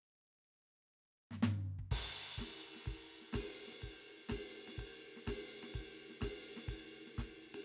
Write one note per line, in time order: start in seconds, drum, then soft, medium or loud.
1.31 snare soft
1.31 floor tom soft
1.42 snare medium
1.42 floor tom medium
1.42 hi-hat pedal loud
1.79 kick soft
1.91 kick soft
1.91 crash medium
1.91 ride medium
2.37 kick soft
2.37 snare soft
2.37 hi-hat pedal medium
2.37 ride medium
2.75 snare soft
2.75 ride soft
2.86 kick soft
2.86 ride medium
3.21 snare soft
3.33 kick soft
3.33 snare soft
3.33 hi-hat pedal medium
3.33 ride loud
3.67 snare soft
3.72 ride soft
3.82 kick soft
3.82 ride medium
4.18 snare soft
4.29 kick soft
4.29 snare soft
4.29 hi-hat pedal medium
4.29 ride loud
4.67 snare soft
4.67 ride medium
4.77 kick soft
4.77 hi-hat pedal soft
4.77 ride medium
5.16 snare soft
5.27 kick soft
5.27 snare soft
5.27 hi-hat pedal medium
5.27 ride loud
5.63 snare soft
5.63 ride medium
5.74 kick soft
5.74 ride medium
6.09 snare soft
6.21 kick soft
6.21 snare soft
6.21 hi-hat pedal medium
6.21 ride loud
6.56 snare soft
6.56 ride medium
6.67 kick soft
6.67 hi-hat pedal soft
6.67 ride medium
7.06 snare soft
7.18 kick soft
7.18 snare soft
7.18 hi-hat pedal medium
7.18 ride medium
7.54 snare soft
7.54 ride loud